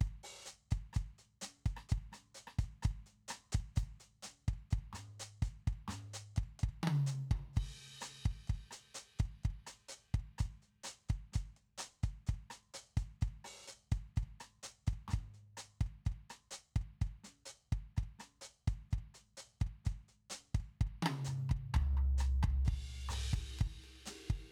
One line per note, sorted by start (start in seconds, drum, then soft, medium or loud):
0.01 closed hi-hat soft
0.01 kick soft
0.07 kick soft
0.23 open hi-hat medium
0.46 closed hi-hat soft
0.46 hi-hat pedal medium
0.71 closed hi-hat soft
0.71 kick soft
0.77 kick soft
0.93 closed hi-hat medium
0.93 kick soft
0.93 cross-stick soft
1.01 kick soft
1.19 closed hi-hat soft
1.42 snare soft
1.42 hi-hat pedal medium
1.66 closed hi-hat soft
1.66 kick soft
1.66 snare soft
1.76 cross-stick soft
1.76 snare soft
1.89 closed hi-hat soft
1.89 kick soft
1.98 kick soft
2.12 closed hi-hat medium
2.12 cross-stick soft
2.12 snare soft
2.35 closed hi-hat soft
2.35 snare soft
2.35 hi-hat pedal medium
2.47 cross-stick soft
2.47 snare soft
2.59 closed hi-hat soft
2.59 kick soft
2.64 kick soft
2.82 closed hi-hat medium
2.82 kick soft
2.82 cross-stick soft
2.82 snare soft
2.91 kick soft
3.06 open hi-hat soft
3.28 closed hi-hat soft
3.28 cross-stick medium
3.28 snare soft
3.28 hi-hat pedal medium
3.52 closed hi-hat medium
3.52 kick soft
3.60 kick soft
3.76 open hi-hat soft
3.76 kick soft
3.76 hi-hat pedal medium
3.83 kick soft
4.00 closed hi-hat soft
4.23 closed hi-hat medium
4.23 snare soft
4.23 hi-hat pedal medium
4.48 kick soft
4.48 closed hi-hat soft
4.53 kick soft
4.71 closed hi-hat soft
4.71 kick soft
4.78 kick soft
4.93 closed hi-hat medium
4.93 cross-stick soft
4.93 snare soft
4.93 mid tom soft
5.20 hi-hat pedal medium
5.42 closed hi-hat soft
5.42 kick soft
5.48 kick soft
5.67 kick soft
5.67 closed hi-hat soft
5.73 kick soft
5.88 closed hi-hat medium
5.88 snare soft
5.88 mid tom soft
5.93 cross-stick soft
6.14 hi-hat pedal medium
6.36 kick soft
6.36 closed hi-hat soft
6.43 kick soft
6.59 kick soft
6.59 closed hi-hat soft
6.69 kick soft
6.83 high tom medium
6.88 high tom loud
7.07 hi-hat pedal medium
7.07 high tom soft
7.31 kick soft
7.31 high tom medium
7.37 kick soft
7.53 kick soft
7.53 hi-hat pedal soft
7.53 crash medium
8.01 closed hi-hat medium
8.01 cross-stick soft
8.01 snare soft
8.01 hi-hat pedal medium
8.25 kick soft
8.25 closed hi-hat soft
8.31 kick soft
8.48 kick soft
8.48 closed hi-hat soft
8.55 kick soft
8.71 closed hi-hat medium
8.71 cross-stick soft
8.95 closed hi-hat soft
8.95 hi-hat pedal medium
9.19 closed hi-hat soft
9.19 kick soft
9.25 kick soft
9.44 kick soft
9.44 closed hi-hat soft
9.50 kick soft
9.67 closed hi-hat medium
9.67 cross-stick soft
9.89 closed hi-hat soft
9.89 hi-hat pedal medium
10.14 kick soft
10.14 closed hi-hat soft
10.19 kick soft
10.38 closed hi-hat medium
10.38 kick soft
10.38 cross-stick soft
10.46 kick soft
10.62 closed hi-hat soft
10.84 closed hi-hat medium
10.84 cross-stick soft
10.84 hi-hat pedal medium
11.09 closed hi-hat soft
11.09 kick soft
11.33 closed hi-hat medium
11.33 kick soft
11.33 snare soft
11.57 closed hi-hat soft
11.78 closed hi-hat medium
11.78 cross-stick soft
11.78 snare soft
11.78 hi-hat pedal medium
12.03 closed hi-hat soft
12.03 kick soft
12.27 closed hi-hat soft
12.27 kick soft
12.34 kick soft
12.50 closed hi-hat medium
12.50 cross-stick soft
12.74 hi-hat pedal medium
12.97 closed hi-hat soft
12.97 kick soft
13.02 kick soft
13.21 closed hi-hat soft
13.21 kick soft
13.28 kick soft
13.44 open hi-hat medium
13.44 cross-stick soft
13.44 snare soft
13.68 hi-hat pedal medium
13.92 closed hi-hat soft
13.92 kick soft
13.97 kick soft
14.16 closed hi-hat soft
14.16 kick soft
14.23 kick soft
14.40 closed hi-hat medium
14.40 cross-stick soft
14.63 hi-hat pedal medium
14.87 closed hi-hat soft
14.87 kick soft
14.93 kick soft
15.08 closed hi-hat medium
15.08 cross-stick soft
15.08 snare soft
15.08 hi-hat pedal soft
15.08 mid tom soft
15.14 kick soft
15.19 kick soft
15.34 closed hi-hat soft
15.57 cross-stick soft
15.57 hi-hat pedal medium
15.81 closed hi-hat soft
15.81 kick soft
15.86 kick soft
16.05 closed hi-hat soft
16.05 kick soft
16.12 kick soft
16.30 closed hi-hat soft
16.30 cross-stick soft
16.51 closed hi-hat soft
16.51 hi-hat pedal medium
16.76 closed hi-hat soft
16.76 kick soft
16.81 kick soft
17.01 closed hi-hat soft
17.01 kick soft
17.07 kick soft
17.24 closed hi-hat soft
17.24 snare soft
17.46 closed hi-hat soft
17.46 hi-hat pedal medium
17.72 closed hi-hat soft
17.72 kick soft
17.97 closed hi-hat soft
17.97 kick soft
17.97 cross-stick soft
18.03 kick soft
18.19 closed hi-hat soft
18.19 cross-stick soft
18.19 snare soft
18.41 closed hi-hat soft
18.41 hi-hat pedal medium
18.68 closed hi-hat soft
18.68 kick soft
18.68 snare soft
18.73 kick soft
18.91 closed hi-hat soft
18.91 kick soft
18.98 kick soft
19.14 closed hi-hat soft
19.14 cross-stick soft
19.37 hi-hat pedal medium
19.61 closed hi-hat soft
19.61 kick soft
19.67 kick soft
19.85 closed hi-hat soft
19.85 kick soft
19.85 snare soft
19.92 kick soft
20.08 closed hi-hat soft
20.30 closed hi-hat medium
20.30 snare soft
20.30 hi-hat pedal medium
20.55 kick soft
20.55 closed hi-hat soft
20.60 kick soft
20.81 kick soft
20.87 kick soft
21.03 high tom medium
21.06 high tom loud
21.25 hi-hat pedal medium
21.25 mid tom soft
21.49 kick soft
21.49 mid tom soft
21.56 kick soft
21.74 kick soft
21.74 floor tom loud
21.82 kick soft
21.97 floor tom medium
22.18 cross-stick medium
22.18 snare soft
22.18 hi-hat pedal medium
22.43 kick soft
22.43 floor tom medium
22.50 kick soft
22.65 kick soft
22.65 hi-hat pedal soft
22.65 ride medium
22.74 kick soft
23.09 cross-stick soft
23.09 hi-hat pedal medium
23.09 mid tom soft
23.09 crash medium
23.13 cross-stick soft
23.33 kick soft
23.33 ride medium
23.38 kick soft
23.59 kick soft
23.59 hi-hat pedal soft
23.59 ride medium
23.67 kick soft
23.84 ride soft
24.06 snare soft
24.06 hi-hat pedal medium
24.06 ride medium
24.30 kick soft
24.30 ride soft